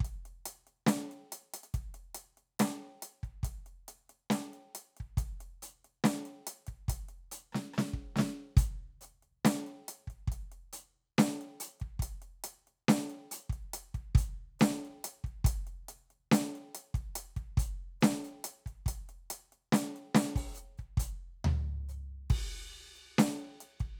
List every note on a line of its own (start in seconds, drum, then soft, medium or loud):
0.01 kick medium
0.05 closed hi-hat medium
0.26 closed hi-hat soft
0.46 closed hi-hat loud
0.67 closed hi-hat soft
0.87 snare loud
0.87 closed hi-hat medium
1.12 closed hi-hat soft
1.33 closed hi-hat loud
1.54 closed hi-hat loud
1.64 closed hi-hat medium
1.75 kick medium
1.75 closed hi-hat medium
1.95 closed hi-hat soft
2.15 closed hi-hat loud
2.38 closed hi-hat soft
2.60 snare loud
2.60 closed hi-hat loud
3.03 closed hi-hat loud
3.24 kick soft
3.24 closed hi-hat soft
3.44 kick medium
3.44 closed hi-hat medium
3.67 closed hi-hat soft
3.89 closed hi-hat medium
4.10 closed hi-hat soft
4.31 snare loud
4.31 closed hi-hat medium
4.54 closed hi-hat soft
4.76 closed hi-hat loud
4.97 kick soft
4.97 closed hi-hat soft
5.18 kick medium
5.18 closed hi-hat medium
5.41 closed hi-hat soft
5.63 closed hi-hat loud
5.85 closed hi-hat soft
6.04 snare loud
6.04 closed hi-hat medium
6.13 snare soft
6.26 closed hi-hat soft
6.47 closed hi-hat loud
6.67 kick soft
6.67 closed hi-hat soft
6.89 kick medium
6.89 closed hi-hat loud
7.09 closed hi-hat soft
7.32 closed hi-hat loud
7.53 cross-stick soft
7.53 snare medium
7.74 cross-stick medium
7.78 snare loud
7.94 kick soft
8.16 snare medium
8.19 snare loud
8.57 open hi-hat loud
8.57 kick loud
9.02 closed hi-hat soft
9.02 hi-hat pedal medium
9.23 closed hi-hat soft
9.45 snare loud
9.45 closed hi-hat loud
9.67 closed hi-hat soft
9.89 closed hi-hat loud
10.08 kick soft
10.08 closed hi-hat soft
10.28 kick medium
10.32 closed hi-hat medium
10.52 closed hi-hat soft
10.73 open hi-hat loud
11.18 snare loud
11.18 closed hi-hat medium
11.18 hi-hat pedal medium
11.42 closed hi-hat soft
11.61 closed hi-hat loud
11.81 kick soft
11.81 closed hi-hat soft
12.00 kick medium
12.00 closed hi-hat loud
12.22 closed hi-hat soft
12.44 closed hi-hat loud
12.68 closed hi-hat soft
12.89 snare loud
12.89 closed hi-hat medium
13.10 closed hi-hat soft
13.32 closed hi-hat loud
13.50 kick medium
13.50 closed hi-hat soft
13.74 closed hi-hat loud
13.95 kick soft
13.95 closed hi-hat soft
14.15 open hi-hat medium
14.15 kick loud
14.60 snare loud
14.60 hi-hat pedal medium
14.70 snare soft
14.85 closed hi-hat soft
15.05 closed hi-hat loud
15.25 kick soft
15.25 closed hi-hat soft
15.45 kick medium
15.45 closed hi-hat loud
15.67 closed hi-hat soft
15.89 closed hi-hat medium
16.11 closed hi-hat soft
16.32 snare loud
16.32 closed hi-hat loud
16.56 closed hi-hat soft
16.75 closed hi-hat loud
16.95 kick medium
16.95 closed hi-hat soft
17.16 closed hi-hat loud
17.37 kick soft
17.37 closed hi-hat soft
17.58 open hi-hat loud
17.58 kick medium
18.01 snare loud
18.01 closed hi-hat medium
18.01 hi-hat pedal soft
18.10 snare soft
18.25 closed hi-hat soft
18.45 closed hi-hat loud
18.67 kick soft
18.67 closed hi-hat soft
18.87 kick medium
18.87 closed hi-hat loud
19.10 closed hi-hat soft
19.31 closed hi-hat loud
19.53 closed hi-hat soft
19.73 snare loud
19.73 closed hi-hat loud
19.97 closed hi-hat soft
20.15 snare loud
20.15 closed hi-hat soft
20.22 snare soft
20.36 open hi-hat medium
20.36 kick medium
20.55 closed hi-hat soft
20.55 hi-hat pedal medium
20.78 closed hi-hat soft
20.78 kick soft
20.98 open hi-hat loud
20.98 kick medium
21.45 floor tom loud
21.89 hi-hat pedal soft
22.31 kick medium
22.31 crash medium
22.96 closed hi-hat soft
23.19 closed hi-hat medium
23.19 snare loud
23.40 closed hi-hat soft
23.61 closed hi-hat medium
23.80 kick medium
23.80 closed hi-hat soft